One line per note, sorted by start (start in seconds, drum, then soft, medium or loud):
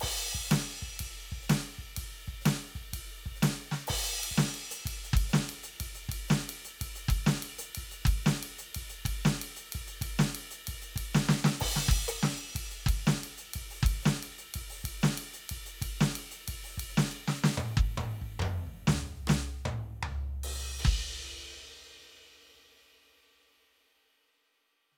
0.01 kick medium
0.01 crash loud
0.35 kick medium
0.45 hi-hat pedal soft
0.52 snare loud
0.52 ride loud
0.83 kick medium
1.00 kick medium
1.00 ride loud
1.33 kick medium
1.43 hi-hat pedal soft
1.50 snare loud
1.50 ride loud
1.79 kick medium
1.97 kick medium
1.97 ride loud
2.28 kick medium
2.42 hi-hat pedal soft
2.46 snare loud
2.46 ride loud
2.76 kick medium
2.94 kick medium
2.94 ride loud
3.27 kick medium
3.36 hi-hat pedal soft
3.43 snare loud
3.43 ride loud
3.72 snare medium
3.88 kick medium
3.88 crash loud
4.04 closed hi-hat medium
4.24 ride loud
4.32 kick soft
4.38 snare loud
4.55 ride medium
4.71 closed hi-hat loud
4.86 kick medium
4.86 ride loud
5.05 closed hi-hat medium
5.14 kick loud
5.14 ride loud
5.30 hi-hat pedal medium
5.34 snare loud
5.50 ride loud
5.64 closed hi-hat medium
5.81 kick medium
5.81 ride loud
5.96 open hi-hat medium
6.09 kick medium
6.09 ride loud
6.29 snare loud
6.29 hi-hat pedal medium
6.50 ride loud
6.65 closed hi-hat medium
6.82 kick medium
6.82 ride loud
6.96 closed hi-hat medium
7.09 kick loud
7.09 ride loud
7.27 snare loud
7.27 hi-hat pedal medium
7.43 ride loud
7.59 closed hi-hat loud
7.76 kick medium
7.76 ride loud
7.92 closed hi-hat medium
8.06 kick loud
8.06 ride loud
8.27 snare loud
8.27 hi-hat pedal medium
8.43 ride loud
8.59 closed hi-hat medium
8.75 kick medium
8.75 ride loud
8.90 closed hi-hat medium
9.06 kick loud
9.06 ride loud
9.26 snare loud
9.26 hi-hat pedal medium
9.42 ride loud
9.57 closed hi-hat medium
9.73 kick medium
9.73 ride loud
9.88 closed hi-hat medium
10.02 kick medium
10.02 ride loud
10.19 snare loud
10.19 hi-hat pedal medium
10.35 ride loud
10.52 closed hi-hat medium
10.68 kick medium
10.68 ride loud
10.82 closed hi-hat medium
10.96 kick medium
10.96 ride loud
11.14 snare loud
11.14 hi-hat pedal medium
11.29 snare loud
11.45 snare loud
11.61 kick loud
11.61 crash loud
11.77 snare medium
11.89 kick loud
11.89 ride loud
12.09 open hi-hat loud
12.09 hi-hat pedal medium
12.23 snare loud
12.37 closed hi-hat medium
12.56 kick medium
12.56 ride loud
12.71 closed hi-hat medium
12.87 kick loud
12.87 ride loud
13.06 snare loud
13.06 hi-hat pedal medium
13.24 ride loud
13.38 closed hi-hat medium
13.54 kick medium
13.54 ride loud
13.71 open hi-hat medium
13.83 kick loud
13.83 ride loud
14.03 snare loud
14.03 hi-hat pedal medium
14.23 ride loud
14.39 closed hi-hat medium
14.55 kick medium
14.55 ride loud
14.70 open hi-hat medium
14.85 kick medium
14.85 ride loud
15.02 snare loud
15.02 hi-hat pedal medium
15.18 ride loud
15.34 closed hi-hat medium
15.50 kick medium
15.50 ride loud
15.67 open hi-hat medium
15.82 kick medium
15.82 ride loud
16.01 snare loud
16.01 hi-hat pedal medium
16.16 ride loud
16.32 closed hi-hat medium
16.48 kick medium
16.48 ride loud
16.64 open hi-hat medium
16.78 kick medium
16.78 ride loud
16.90 hi-hat pedal soft
16.98 snare loud
17.12 ride bell medium
17.28 snare loud
17.44 kick soft
17.44 snare loud
17.58 high tom loud
17.78 kick loud
17.98 high tom loud
18.22 kick medium
18.40 mid tom loud
18.42 mid tom loud
18.68 kick medium
18.88 snare loud
18.88 floor tom loud
19.28 cross-stick medium
19.28 snare loud
19.66 high tom loud
20.03 floor tom loud
20.44 crash medium
20.80 ride loud
20.86 kick loud
21.09 mid tom soft
21.14 mid tom soft
24.93 snare soft